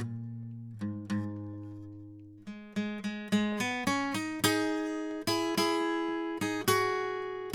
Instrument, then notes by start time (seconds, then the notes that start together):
acoustic guitar
0.00 A#2
0.83 G#2
1.11 G#2
2.48 G#3
2.78 G#3
3.05 G#3
3.34 G#3
3.62 B3
3.89 C#4
4.16 D#4
4.45 D#4 G#4
5.29 E4 G#4
5.59 E4 G#4
6.43 D#4 G#4
6.69 F#4 G#4